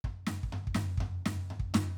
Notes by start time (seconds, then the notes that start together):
0.05 kick, floor tom
0.27 snare, floor tom
0.44 kick
0.53 floor tom
0.68 kick
0.75 snare, floor tom
0.98 kick, floor tom
1.26 snare, floor tom
1.51 floor tom
1.60 kick
1.74 snare, floor tom